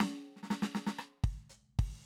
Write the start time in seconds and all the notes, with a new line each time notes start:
0.02 snare
0.36 snare
0.43 snare
0.50 snare
0.62 snare
0.75 snare
0.87 snare
0.99 cross-stick
1.24 open hi-hat, kick
1.50 hi-hat pedal
1.79 open hi-hat, kick